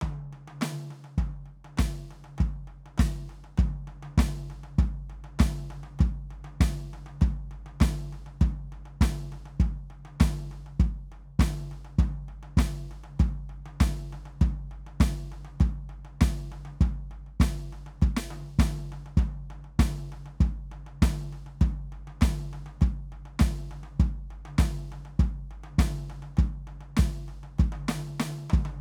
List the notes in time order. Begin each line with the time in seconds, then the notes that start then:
0.01 kick, mid tom
0.33 mid tom
0.48 mid tom
0.61 snare, mid tom
0.91 mid tom
1.04 mid tom
1.18 kick, mid tom
1.46 mid tom
1.64 mid tom
1.77 kick, snare, mid tom
2.11 mid tom
2.24 mid tom
2.38 kick, mid tom
2.67 mid tom
2.86 mid tom
2.98 kick, snare, mid tom
3.29 mid tom
3.44 mid tom
3.58 kick, mid tom
3.87 mid tom
4.03 mid tom
4.18 kick, snare, mid tom
4.50 mid tom
4.63 mid tom
4.78 kick, mid tom
5.10 mid tom
5.24 mid tom
5.39 kick, snare, mid tom
5.70 mid tom
5.83 mid tom
5.99 kick, mid tom
6.30 mid tom
6.44 mid tom
6.61 kick, snare, mid tom
6.93 mid tom
7.06 mid tom
7.21 kick, mid tom
7.51 mid tom
7.66 mid tom
7.80 kick, snare, mid tom
8.12 mid tom
8.26 mid tom
8.41 kick, mid tom
8.72 mid tom
8.85 mid tom
9.01 kick, snare, mid tom
9.32 mid tom
9.46 mid tom
9.60 kick, mid tom
9.90 mid tom
10.05 mid tom
10.20 kick, snare, mid tom
10.51 mid tom
10.66 mid tom
10.80 kick, mid tom
11.12 mid tom
11.39 kick, snare, mid tom
11.71 mid tom
11.85 mid tom
11.98 kick, mid tom
12.28 mid tom
12.43 mid tom
12.57 kick, snare, mid tom
12.91 mid tom
13.04 mid tom
13.19 kick, mid tom
13.49 mid tom
13.66 mid tom
13.80 kick, snare, mid tom
14.12 mid tom
14.25 mid tom
14.41 kick, mid tom
14.71 mid tom
14.87 mid tom
15.00 kick, snare, mid tom
15.32 mid tom
15.45 mid tom
15.60 kick, mid tom
15.89 mid tom
16.05 mid tom
16.21 kick, snare, mid tom
16.52 mid tom
16.65 mid tom
16.81 kick, mid tom
17.11 mid tom
17.26 mid tom
17.40 kick, snare, mid tom
17.73 mid tom
17.86 mid tom
18.02 kick, mid tom
18.16 snare
18.30 mid tom
18.59 kick, snare, mid tom
18.92 mid tom
19.06 mid tom
19.17 kick, mid tom
19.50 mid tom
19.64 mid tom
19.79 kick, snare, mid tom
20.12 mid tom
20.26 mid tom
20.40 kick, mid tom
20.71 mid tom
20.86 mid tom
21.02 kick, snare, mid tom
21.32 mid tom
21.46 mid tom
21.61 kick, mid tom
21.92 mid tom
22.07 mid tom
22.21 kick, snare, mid tom
22.53 mid tom
22.66 mid tom
22.81 kick, mid tom
23.12 mid tom
23.25 mid tom
23.39 kick, snare, mid tom
23.71 mid tom
23.83 mid tom
24.00 kick, mid tom
24.30 mid tom
24.45 mid tom
24.58 kick, snare, mid tom
24.92 mid tom
25.05 mid tom
25.19 kick, mid tom
25.51 mid tom
25.64 mid tom
25.78 kick, snare, mid tom
26.10 mid tom
26.22 mid tom
26.37 kick, mid tom
26.67 mid tom
26.81 mid tom
26.97 kick, snare, mid tom
27.28 mid tom
27.43 mid tom
27.59 kick, mid tom
27.72 mid tom
27.88 snare, mid tom
28.20 snare, mid tom
28.50 kick, mid tom
28.65 mid tom